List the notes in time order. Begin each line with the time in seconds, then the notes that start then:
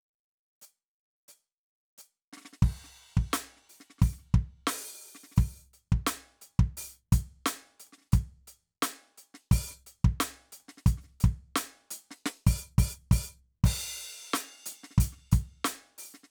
0.62 hi-hat pedal
1.28 hi-hat pedal
1.98 hi-hat pedal
2.33 snare
2.37 snare
2.41 snare
2.45 snare
2.53 snare
2.62 kick, crash
2.84 snare
2.96 open hi-hat
3.17 kick
3.33 closed hi-hat, snare
3.56 snare
3.69 open hi-hat
3.80 snare
3.90 snare
3.98 open hi-hat, kick, snare
4.06 snare
4.12 snare
4.19 snare
4.34 kick
4.67 open hi-hat, snare
5.04 open hi-hat
5.15 snare
5.23 snare
5.31 snare
5.36 open hi-hat, kick, snare
5.43 snare
5.47 snare
5.51 snare
5.54 snare
5.73 closed hi-hat
5.92 kick
6.07 closed hi-hat, snare
6.41 closed hi-hat
6.59 kick
6.77 open hi-hat
7.12 closed hi-hat, kick
7.46 closed hi-hat, snare
7.80 closed hi-hat
7.87 closed hi-hat
7.92 snare
7.98 snare
8.01 snare
8.05 snare
8.11 closed hi-hat, kick, snare
8.47 closed hi-hat
8.82 closed hi-hat, snare
9.18 open hi-hat
9.34 snare
9.51 open hi-hat, kick
9.70 snare
9.86 closed hi-hat
10.04 kick
10.20 closed hi-hat, snare
10.52 closed hi-hat
10.60 closed hi-hat
10.68 snare
10.77 snare
10.86 closed hi-hat, kick, snare
10.97 snare, hi-hat pedal
11.03 snare
11.07 snare
11.12 snare
11.20 closed hi-hat, kick
11.56 closed hi-hat, snare
11.91 closed hi-hat
12.11 snare
12.26 snare
12.47 open hi-hat, kick
12.59 hi-hat pedal
12.78 open hi-hat, kick
12.92 hi-hat pedal
13.11 open hi-hat, kick
13.24 hi-hat pedal
13.64 open hi-hat, kick, crash
13.96 open hi-hat
14.34 open hi-hat, snare
14.66 closed hi-hat
14.72 closed hi-hat
14.83 snare
14.91 snare
14.98 closed hi-hat, kick
15.03 snare
15.12 snare
15.18 snare
15.32 closed hi-hat, kick
15.64 closed hi-hat, snare
15.98 open hi-hat
16.05 open hi-hat
16.14 snare
16.23 snare